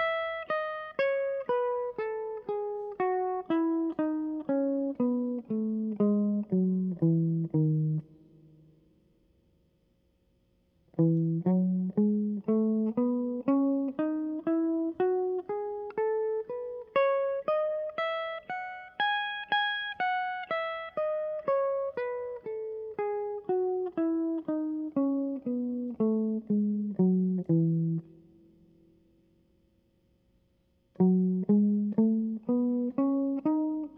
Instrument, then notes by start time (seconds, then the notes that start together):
electric guitar
0.00 E5
0.50 D#5
0.99 C#5
1.50 B4
1.99 A4
2.49 G#4
3.00 F#4
3.51 E4
3.99 D#4
4.50 C#4
5.00 B3
5.51 A3
6.01 G#3
6.53 F#3
7.03 E3
7.56 D#3
11.00 E3
11.47 F#3
11.98 G#3
12.49 A3
12.98 B3
13.49 C#4
13.99 D#4
14.47 E4
15.00 F#4
15.50 G#4
15.98 A4
16.50 B4
16.96 C#5
17.48 D#5
17.99 E5
18.50 F#5
19.00 G#5
19.52 G#5
20.00 F#5
20.51 E5
20.98 D#5
21.48 C#5
21.98 B4
22.46 A4
22.99 G#4
23.50 F#4
23.98 E4
24.49 D#4
24.97 C#4
25.47 B3
26.01 A3
26.51 G#3
27.00 F#3
27.51 E3
31.01 F#3
31.50 G#3
31.99 A3
32.49 B3
32.99 C#4
33.46 D#4